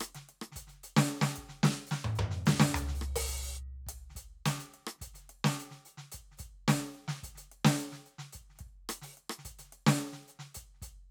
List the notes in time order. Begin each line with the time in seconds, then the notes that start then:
0.01 closed hi-hat, cross-stick
0.15 snare, closed hi-hat
0.30 closed hi-hat
0.42 cross-stick
0.53 kick, snare
0.57 closed hi-hat
0.68 closed hi-hat, snare
0.74 snare
0.84 closed hi-hat
0.97 snare
1.12 closed hi-hat
1.22 snare
1.26 snare
1.34 closed hi-hat, hi-hat pedal
1.38 kick
1.44 kick
1.50 snare
1.63 snare, high tom
1.87 hi-hat pedal
1.92 snare
2.05 open hi-hat, high tom
2.16 hi-hat pedal, mid tom
2.31 snare
2.47 snare, hi-hat pedal
2.60 snare
2.75 hi-hat pedal, floor tom
2.89 snare
2.96 hi-hat pedal
3.02 cross-stick
3.16 open hi-hat, kick
3.87 kick, closed hi-hat
3.93 kick
4.11 snare
4.16 closed hi-hat, kick
4.24 kick
4.46 closed hi-hat, snare
4.58 closed hi-hat, snare
4.75 closed hi-hat
4.88 cross-stick
4.99 closed hi-hat, kick, snare
5.08 kick
5.14 closed hi-hat, snare
5.19 snare
5.24 snare
5.30 closed hi-hat
5.45 snare
5.60 closed hi-hat
5.72 snare
5.86 open hi-hat
5.98 snare
6.13 closed hi-hat, kick
6.32 snare
6.38 closed hi-hat, kick, snare, hi-hat pedal
6.50 kick
6.69 closed hi-hat, snare
6.80 open hi-hat, snare
6.95 closed hi-hat
7.09 snare
7.21 closed hi-hat, kick, snare
7.30 kick
7.36 closed hi-hat, snare
7.41 snare
7.52 closed hi-hat
7.65 snare
7.74 snare
7.80 closed hi-hat
7.93 snare
8.06 open hi-hat, hi-hat pedal
8.19 snare
8.33 closed hi-hat, kick
8.50 snare
8.56 snare, closed hi-hat
8.61 kick
8.67 kick
8.70 kick
8.90 closed hi-hat, cross-stick
9.02 open hi-hat, snare
9.14 hi-hat pedal
9.18 closed hi-hat
9.30 cross-stick
9.39 snare
9.46 closed hi-hat, kick
9.51 kick
9.59 closed hi-hat, snare
9.64 snare
9.68 snare
9.73 closed hi-hat
9.87 snare
10.01 closed hi-hat
10.14 snare
10.28 open hi-hat, hi-hat pedal
10.40 snare
10.55 closed hi-hat, kick
10.75 snare
10.79 kick, snare
10.83 closed hi-hat
10.89 kick
10.92 kick